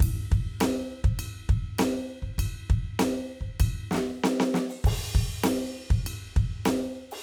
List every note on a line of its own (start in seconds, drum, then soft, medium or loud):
0.01 kick loud
0.01 ride loud
0.32 kick loud
0.32 snare soft
0.61 snare loud
0.61 ride bell loud
1.05 kick loud
1.05 snare soft
1.20 ride bell loud
1.50 kick loud
1.50 snare soft
1.79 snare loud
1.79 ride bell loud
2.23 kick medium
2.39 kick loud
2.39 ride bell loud
2.71 kick loud
2.71 snare soft
3.00 snare loud
3.00 ride bell loud
3.42 kick medium
3.61 kick loud
3.61 ride bell loud
3.92 snare loud
3.95 snare loud
4.25 snare loud
4.29 hi-hat pedal medium
4.41 snare loud
4.55 snare loud
4.70 open hi-hat medium
4.85 kick loud
4.85 crash loud
5.16 kick loud
5.44 snare loud
5.44 ride loud
5.91 kick loud
5.91 snare soft
6.07 ride bell loud
6.37 kick loud
6.66 snare loud
6.66 ride bell loud
7.12 crash loud